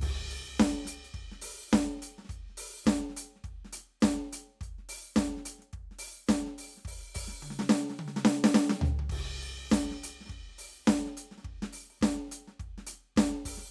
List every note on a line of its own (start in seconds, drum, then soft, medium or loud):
0.01 kick medium
0.01 snare soft
0.01 hi-hat pedal medium
0.01 ride loud
0.20 snare soft
0.30 open hi-hat medium
0.59 kick medium
0.59 snare loud
0.59 hi-hat pedal soft
0.85 open hi-hat loud
0.85 snare soft
1.04 closed hi-hat medium
1.14 kick medium
1.14 closed hi-hat soft
1.32 snare soft
1.42 open hi-hat loud
1.42 snare soft
1.71 kick medium
1.71 snare loud
1.71 closed hi-hat medium
1.71 hi-hat pedal medium
1.97 snare soft
2.02 open hi-hat loud
2.18 snare soft
2.25 snare soft
2.29 closed hi-hat soft
2.29 kick medium
2.29 snare soft
2.49 kick soft
2.49 snare soft
2.57 open hi-hat loud
2.84 kick soft
2.84 snare loud
2.84 closed hi-hat soft
2.84 hi-hat pedal medium
3.10 snare soft
3.17 open hi-hat loud
3.36 snare soft
3.44 kick soft
3.44 closed hi-hat soft
3.44 hi-hat pedal soft
3.65 snare soft
3.73 closed hi-hat loud
4.01 closed hi-hat medium
4.01 kick soft
4.01 snare loud
4.01 hi-hat pedal soft
4.26 snare soft
4.33 closed hi-hat loud
4.61 closed hi-hat medium
4.61 kick medium
4.78 snare soft
4.89 open hi-hat loud
5.14 closed hi-hat medium
5.14 kick medium
5.14 snare loud
5.14 hi-hat pedal soft
5.37 kick soft
5.37 snare soft
5.45 closed hi-hat loud
5.59 snare soft
5.59 closed hi-hat soft
5.73 kick soft
5.73 closed hi-hat soft
5.91 snare soft
5.99 open hi-hat loud
6.27 closed hi-hat loud
6.27 kick soft
6.27 snare loud
6.27 hi-hat pedal soft
6.46 snare soft
6.58 open hi-hat loud
6.77 snare soft
6.85 open hi-hat medium
6.85 kick medium
7.15 open hi-hat loud
7.15 kick medium
7.28 snare soft
7.43 high tom medium
7.50 snare soft
7.59 snare medium
7.69 snare loud
7.90 snare soft
7.99 high tom medium
8.08 snare soft
8.16 snare medium
8.25 snare loud
8.44 snare loud
8.55 snare loud
8.70 snare medium
8.81 floor tom loud
8.81 hi-hat pedal soft
8.99 high tom medium
9.10 kick medium
9.10 ride loud
9.43 open hi-hat medium
9.70 closed hi-hat loud
9.70 kick medium
9.70 snare loud
9.70 hi-hat pedal medium
9.91 snare soft
10.04 closed hi-hat loud
10.21 snare soft
10.26 kick soft
10.26 snare soft
10.32 closed hi-hat soft
10.49 snare soft
10.58 open hi-hat loud
10.85 closed hi-hat medium
10.85 kick soft
10.85 snare loud
10.85 hi-hat pedal soft
11.06 snare soft
11.17 closed hi-hat loud
11.31 snare soft
11.38 snare soft
11.43 kick soft
11.43 snare soft
11.43 closed hi-hat soft
11.62 snare medium
11.73 open hi-hat loud
11.90 open hi-hat soft
11.98 kick soft
11.98 hi-hat pedal soft
12.03 closed hi-hat medium
12.03 snare loud
12.27 snare soft
12.32 closed hi-hat loud
12.48 snare soft
12.60 kick medium
12.60 closed hi-hat soft
12.78 snare soft
12.87 closed hi-hat loud
13.16 closed hi-hat medium
13.16 kick medium
13.16 snare loud
13.35 snare soft
13.45 open hi-hat loud
13.45 kick soft
13.57 snare soft